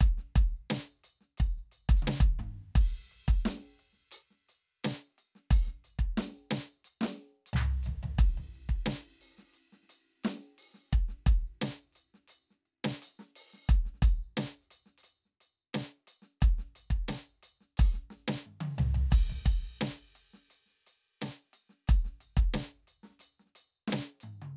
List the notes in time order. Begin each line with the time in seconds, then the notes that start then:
0.01 kick, percussion
0.19 snare
0.37 closed hi-hat, kick
0.71 closed hi-hat, snare
1.05 closed hi-hat
1.22 snare
1.38 closed hi-hat, kick
1.58 snare
1.72 closed hi-hat
1.90 kick
1.98 hi-hat pedal
2.03 high tom
2.08 snare
2.21 kick
2.40 kick, mid tom
2.76 kick, crash
2.92 snare
2.96 snare
3.08 closed hi-hat, hi-hat pedal
3.29 kick
3.46 closed hi-hat, snare
3.80 closed hi-hat
3.94 snare
3.99 snare
4.12 hi-hat pedal, percussion
4.31 snare
4.37 snare
4.50 closed hi-hat
4.85 closed hi-hat, snare
5.19 percussion
5.36 snare
5.51 kick, percussion
5.66 snare, hi-hat pedal
5.85 closed hi-hat
6.00 kick
6.18 closed hi-hat, snare
6.52 closed hi-hat, snare
6.85 hi-hat pedal
7.02 snare
7.04 snare
7.47 hi-hat pedal
7.54 percussion, floor tom
7.84 floor tom, hi-hat pedal
7.89 kick
8.04 floor tom
8.19 kick, ride
8.38 floor tom
8.56 ride
8.70 kick
8.87 snare, ride
9.22 percussion
9.39 snare
9.55 hi-hat pedal
9.73 snare
9.84 snare
9.90 closed hi-hat
10.25 closed hi-hat, snare
10.59 percussion
10.75 snare
10.91 closed hi-hat, kick, hi-hat pedal
11.10 snare
11.27 closed hi-hat, kick
11.62 closed hi-hat, snare
11.93 closed hi-hat, hi-hat pedal
12.15 snare
12.29 closed hi-hat, hi-hat pedal
12.51 snare
12.66 closed hi-hat
12.85 snare
13.03 closed hi-hat
13.20 snare
13.37 percussion
13.54 snare
13.70 kick, hi-hat pedal, percussion
13.86 snare
13.95 snare
14.03 closed hi-hat, kick
14.38 closed hi-hat, snare
14.63 hi-hat pedal
14.71 closed hi-hat
14.87 snare
14.99 hi-hat pedal
15.04 closed hi-hat
15.26 snare
15.32 snare
15.36 snare
15.41 closed hi-hat
15.74 closed hi-hat, snare
16.08 closed hi-hat
16.23 snare
16.42 closed hi-hat, kick
16.59 snare
16.76 closed hi-hat
16.91 kick
17.09 closed hi-hat, snare
17.44 closed hi-hat
17.62 snare
17.78 kick, percussion
17.94 snare
18.11 snare
18.29 snare, hi-hat pedal
18.47 mid tom
18.61 high tom
18.79 floor tom
18.95 floor tom
19.12 kick, crash
19.30 floor tom
19.46 closed hi-hat, kick
19.82 closed hi-hat, snare
20.16 closed hi-hat
20.34 snare
20.51 closed hi-hat
20.67 snare, hi-hat pedal
20.71 snare
20.74 snare
20.87 closed hi-hat
21.22 closed hi-hat, snare
21.54 closed hi-hat
21.70 snare
21.88 closed hi-hat, kick
22.06 snare
22.21 closed hi-hat
22.38 kick
22.55 closed hi-hat, snare
22.88 closed hi-hat
23.04 snare
23.10 snare
23.20 closed hi-hat, snare, hi-hat pedal
23.40 snare
23.46 snare
23.56 closed hi-hat
23.88 snare, hi-hat pedal
23.93 snare
24.21 hi-hat pedal, mid tom
24.43 high tom